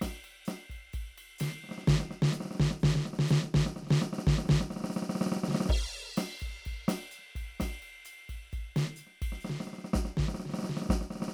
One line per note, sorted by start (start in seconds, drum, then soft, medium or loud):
0.01 kick soft
0.01 snare medium
0.01 hi-hat pedal soft
0.01 ride medium
0.08 kick soft
0.24 ride soft
0.45 snare medium
0.45 hi-hat pedal medium
0.45 ride medium
0.70 kick soft
0.70 ride soft
0.75 kick soft
0.92 kick soft
0.92 hi-hat pedal soft
0.92 ride medium
1.18 ride medium
1.38 snare medium
1.38 hi-hat pedal loud
1.38 ride medium
1.60 hi-hat pedal soft
1.64 snare soft
1.69 snare soft
1.71 snare soft
1.78 snare soft
1.84 snare soft
1.84 hi-hat pedal medium
1.88 kick soft
1.88 snare loud
2.00 snare soft
2.11 snare soft
2.22 snare loud
2.32 snare soft
2.32 hi-hat pedal medium
2.40 snare soft
2.45 snare soft
2.51 snare soft
2.51 hi-hat pedal soft
2.55 snare soft
2.60 kick soft
2.60 snare loud
2.71 snare soft
2.80 kick soft
2.80 snare loud
2.80 hi-hat pedal soft
2.89 kick soft
2.95 snare medium
3.06 snare soft
3.13 snare soft
3.19 snare loud
3.28 snare loud
3.28 hi-hat pedal medium
3.43 snare soft
3.54 kick soft
3.54 snare loud
3.66 snare medium
3.74 snare soft
3.74 hi-hat pedal soft
3.83 snare soft
3.87 snare soft
3.91 snare loud
3.99 snare medium
3.99 hi-hat pedal medium
4.13 snare medium
4.19 snare medium
4.27 kick soft
4.27 snare loud
4.35 kick soft
4.35 snare medium
4.45 snare soft
4.45 hi-hat pedal soft
4.49 kick soft
4.49 snare loud
4.61 snare medium
4.70 snare soft
4.76 snare soft
4.84 snare medium
4.90 snare soft
4.90 hi-hat pedal medium
4.96 snare medium
5.02 snare medium
5.10 snare medium
5.15 snare medium
5.15 hi-hat pedal medium
5.21 snare medium
5.26 snare medium
5.32 snare medium
5.37 snare medium
5.41 snare medium
5.41 hi-hat pedal soft
5.48 snare medium
5.51 snare medium
5.55 snare medium
5.60 snare medium
5.66 kick medium
5.66 snare medium
5.66 hi-hat pedal soft
5.66 crash loud
5.82 kick soft
6.17 snare medium
6.17 hi-hat pedal medium
6.17 ride medium
6.38 hi-hat pedal soft
6.38 ride soft
6.42 kick soft
6.49 snare soft
6.65 kick soft
6.65 hi-hat pedal soft
6.65 ride soft
6.72 kick soft
6.88 snare medium
6.88 ride medium
7.11 hi-hat pedal medium
7.11 ride soft
7.19 snare soft
7.35 kick soft
7.35 ride soft
7.41 kick soft
7.60 kick soft
7.60 snare medium
7.60 hi-hat pedal soft
7.60 ride medium
7.67 kick soft
7.82 ride soft
8.05 hi-hat pedal medium
8.05 ride medium
8.29 kick soft
8.29 ride soft
8.34 kick soft
8.51 kick soft
8.51 hi-hat pedal soft
8.51 ride soft
8.58 kick soft
8.76 snare loud
8.76 ride medium
8.96 hi-hat pedal medium
8.96 ride soft
9.07 snare soft
9.22 kick soft
9.22 ride medium
9.28 kick soft
9.32 snare soft
9.41 snare soft
9.41 hi-hat pedal medium
9.50 snare medium
9.54 snare soft
9.60 snare soft
9.60 hi-hat pedal medium
9.67 snare soft
9.73 snare soft
9.78 snare soft
9.84 snare soft
9.94 kick soft
9.94 snare medium
9.94 hi-hat pedal medium
10.03 kick soft
10.03 snare soft
10.17 kick soft
10.17 snare medium
10.28 snare soft
10.35 snare soft
10.40 snare soft
10.45 snare soft
10.50 snare soft
10.54 snare medium
10.59 snare medium
10.63 snare soft
10.64 snare medium
10.69 snare medium
10.73 snare soft
10.77 snare soft
10.82 snare soft
10.86 kick soft
10.86 snare soft
10.90 snare medium
11.00 kick soft
11.00 snare soft
11.11 snare soft
11.16 snare soft
11.20 snare soft
11.22 snare medium
11.28 snare medium